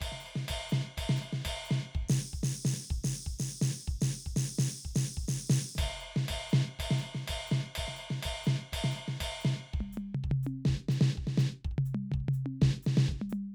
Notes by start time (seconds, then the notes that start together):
0.01 kick, ride bell
0.08 kick
0.12 snare
0.20 hi-hat pedal
0.26 ride
0.36 snare
0.48 kick, ride bell
0.69 snare, hi-hat pedal
0.98 kick, ride bell
1.10 snare
1.16 hi-hat pedal
1.22 ride
1.33 snare
1.45 kick, ride bell
1.65 hi-hat pedal
1.71 snare
1.95 kick
2.03 kick
2.05 kick
2.09 snare, hi-hat pedal, crash
2.33 kick
2.44 snare, crash
2.65 snare, crash
2.74 snare
2.91 kick
2.98 kick
3.04 snare, crash
3.27 kick
3.39 snare, crash
3.62 snare, crash
3.71 snare
3.88 kick
3.95 kick
4.01 snare, crash
4.26 kick
4.36 snare, crash
4.59 snare, crash
4.69 snare
4.85 kick
4.91 kick
4.95 snare, crash
5.17 kick
5.23 kick
5.28 snare, crash
5.50 snare, crash
5.58 snare
5.76 kick, snare, ride
5.87 kick
6.00 hi-hat pedal, ride
6.16 snare
6.29 kick, ride
6.36 kick
6.49 hi-hat pedal
6.53 snare
6.79 kick, ride
6.91 snare
6.98 hi-hat pedal
7.03 ride
7.15 snare
7.28 kick, ride
7.47 hi-hat pedal
7.52 snare
7.76 kick, ride
7.84 kick
7.88 snare
7.96 hi-hat pedal, ride
8.11 snare
8.23 kick, ride
8.31 kick
8.44 snare, hi-hat pedal
8.73 kick, ride
8.79 kick
8.84 snare
8.91 hi-hat pedal
8.96 ride
9.08 snare
9.21 kick, ride bell
9.40 hi-hat pedal
9.45 snare
9.56 snare
9.74 kick
9.80 kick, mid tom
9.93 hi-hat pedal
9.98 mid tom
10.15 floor tom
10.24 kick
10.31 kick, floor tom
10.43 hi-hat pedal, high tom
10.66 kick, snare
10.75 kick
10.89 snare, hi-hat pedal
11.01 snare
11.16 kick, snare
11.27 snare
11.38 snare, hi-hat pedal
11.65 kick
11.71 kick
11.78 floor tom
11.86 hi-hat pedal
11.95 mid tom
12.12 kick, floor tom
12.20 kick
12.29 floor tom
12.34 hi-hat pedal
12.46 high tom
12.62 kick, snare
12.78 snare
12.83 snare, hi-hat pedal
12.97 snare
13.08 kick, snare
13.15 kick
13.22 mid tom
13.30 hi-hat pedal, mid tom